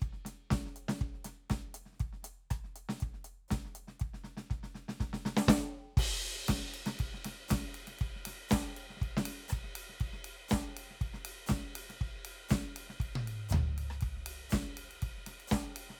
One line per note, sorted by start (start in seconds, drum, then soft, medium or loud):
0.01 closed hi-hat soft
0.01 kick medium
0.13 snare soft
0.25 snare soft
0.25 closed hi-hat medium
0.51 closed hi-hat soft
0.51 kick medium
0.51 snare medium
0.66 snare soft
0.76 closed hi-hat medium
0.89 snare medium
1.00 kick medium
1.00 closed hi-hat soft
1.14 snare soft
1.25 snare soft
1.25 closed hi-hat medium
1.50 kick medium
1.50 snare medium
1.50 closed hi-hat soft
1.74 closed hi-hat medium
1.86 snare soft
1.90 snare soft
1.92 snare soft
2.00 kick medium
2.00 closed hi-hat soft
2.13 snare soft
2.23 snare soft
2.23 closed hi-hat medium
2.51 kick medium
2.51 cross-stick medium
2.51 closed hi-hat medium
2.64 snare soft
2.76 closed hi-hat medium
2.89 snare medium
3.00 kick medium
3.00 closed hi-hat medium
3.14 snare soft
3.25 open hi-hat medium
3.48 kick medium
3.48 snare medium
3.48 closed hi-hat medium
3.48 hi-hat pedal soft
3.65 snare soft
3.75 closed hi-hat medium
3.88 snare soft
4.00 kick medium
4.00 closed hi-hat soft
4.14 snare soft
4.24 snare soft
4.37 snare soft
4.50 kick medium
4.50 snare soft
4.63 snare soft
4.75 snare soft
4.88 snare medium
5.00 kick medium
5.00 snare soft
5.13 snare medium
5.25 snare medium
5.37 snare loud
5.48 kick medium
5.48 snare loud
5.97 kick medium
5.97 crash loud
5.97 ride loud
6.22 ride medium
6.47 kick medium
6.47 snare medium
6.47 hi-hat pedal medium
6.47 ride loud
6.63 snare soft
6.74 ride medium
6.86 snare medium
6.86 ride medium
6.99 kick medium
6.99 ride medium
7.14 snare soft
7.25 snare soft
7.25 ride loud
7.49 kick medium
7.49 snare medium
7.49 hi-hat pedal loud
7.49 ride loud
7.61 snare soft
7.75 ride medium
7.87 snare soft
7.87 ride medium
7.99 kick medium
7.99 ride medium
8.16 snare soft
8.26 snare soft
8.26 ride loud
8.49 kick medium
8.49 snare loud
8.49 hi-hat pedal loud
8.49 ride loud
8.66 snare soft
8.77 ride medium
8.90 snare soft
8.96 snare soft
9.02 kick medium
9.02 ride soft
9.17 snare medium
9.26 ride loud
9.48 cross-stick medium
9.48 hi-hat pedal loud
9.48 ride medium
9.53 kick medium
9.63 snare soft
9.76 ride loud
9.89 snare soft
10.00 kick medium
10.00 ride medium
10.13 snare soft
10.25 ride loud
10.49 snare medium
10.49 hi-hat pedal loud
10.49 ride medium
10.53 kick medium
10.77 ride loud
10.90 snare soft
11.01 kick medium
11.01 ride soft
11.14 snare soft
11.25 ride loud
11.47 snare medium
11.47 hi-hat pedal loud
11.47 ride medium
11.51 kick medium
11.76 ride loud
11.89 snare soft
11.89 ride medium
12.01 kick medium
12.25 ride loud
12.49 kick medium
12.49 snare loud
12.49 hi-hat pedal loud
12.49 ride medium
12.76 ride loud
12.89 snare soft
13.00 kick medium
13.00 ride medium
13.16 high tom loud
13.28 ride medium
13.49 kick medium
13.49 floor tom loud
13.49 hi-hat pedal loud
13.78 ride medium
13.90 cross-stick medium
14.01 kick medium
14.01 ride medium
14.16 snare soft
14.26 ride loud
14.50 kick medium
14.50 snare loud
14.50 hi-hat pedal loud
14.50 ride medium
14.77 ride medium
14.86 snare soft
14.91 ride medium
15.02 kick medium
15.02 ride medium
15.18 snare soft
15.26 snare soft
15.26 ride medium
15.40 ride medium
15.48 snare medium
15.48 hi-hat pedal loud
15.52 kick medium
15.52 ride medium
15.67 snare soft
15.76 ride loud
15.90 snare soft